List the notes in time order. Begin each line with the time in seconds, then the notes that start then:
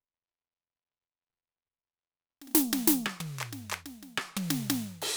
2.41 snare
2.47 snare
2.51 snare
2.55 snare
2.73 snare
2.87 snare
3.06 cross-stick
3.20 mid tom
3.38 percussion
3.53 snare
3.70 percussion
3.86 snare
4.03 snare
4.17 cross-stick
4.37 high tom
4.50 snare
4.70 snare
5.02 crash, ride